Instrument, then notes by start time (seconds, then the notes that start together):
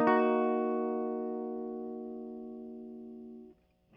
electric guitar
0.00 D#4
0.07 F#4